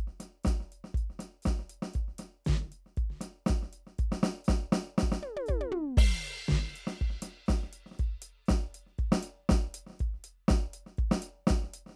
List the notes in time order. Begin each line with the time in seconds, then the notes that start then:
0.07 snare
0.20 snare, open hi-hat
0.44 kick, snare, closed hi-hat, hi-hat pedal
0.60 snare
0.72 closed hi-hat
0.84 snare
0.94 kick, closed hi-hat
1.10 snare
1.19 snare, closed hi-hat
1.42 snare, hi-hat pedal
1.46 kick, closed hi-hat
1.59 snare
1.69 closed hi-hat
1.82 snare
1.94 kick, closed hi-hat
2.08 snare
2.18 snare, open hi-hat
2.45 kick, snare, closed hi-hat, hi-hat pedal
2.62 snare
2.72 closed hi-hat
2.86 snare
2.97 kick, closed hi-hat
3.10 snare
3.21 snare, open hi-hat
3.46 kick, snare, closed hi-hat, hi-hat pedal
3.63 snare
3.73 closed hi-hat
3.87 snare
3.98 kick, closed hi-hat
4.12 snare
4.23 snare
4.36 snare
4.44 snare, hi-hat pedal
4.49 kick
4.59 snare
4.72 snare
4.87 snare
4.98 snare
5.03 kick
5.12 snare
5.22 high tom
5.36 open hi-hat, high tom
5.46 kick, hi-hat pedal, high tom
5.61 closed hi-hat, high tom
5.71 floor tom
5.97 kick, crash, ride
6.48 kick, snare
6.66 snare
6.76 closed hi-hat
6.87 snare
6.98 kick, closed hi-hat
7.10 snare
7.22 open hi-hat, snare
7.46 kick, snare, closed hi-hat, hi-hat pedal
7.63 snare
7.73 closed hi-hat
7.86 snare
7.91 snare
7.95 snare, closed hi-hat
7.99 kick
8.22 open hi-hat
8.46 snare, closed hi-hat, hi-hat pedal
8.50 kick
8.74 closed hi-hat
8.87 snare
8.98 kick, closed hi-hat
9.12 snare
9.23 closed hi-hat
9.49 kick, snare, closed hi-hat
9.67 snare
9.74 closed hi-hat
9.87 snare
9.90 snare
9.94 snare
9.99 kick, closed hi-hat
10.14 snare
10.24 closed hi-hat
10.48 kick, snare, closed hi-hat
10.73 closed hi-hat
10.86 snare
10.97 kick, closed hi-hat
11.11 snare
11.22 closed hi-hat
11.47 kick, snare, closed hi-hat
11.64 snare
11.74 closed hi-hat
11.86 snare
11.89 snare